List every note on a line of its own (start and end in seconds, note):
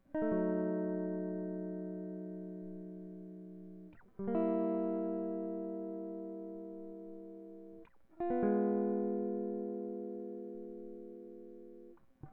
0.16 3.95 D#4
0.23 3.67 A3
0.33 3.98 F#3
4.21 7.83 G3
4.29 7.85 A#3
4.36 7.85 E4
8.21 11.97 F4
8.31 11.94 B3
8.44 11.94 G#3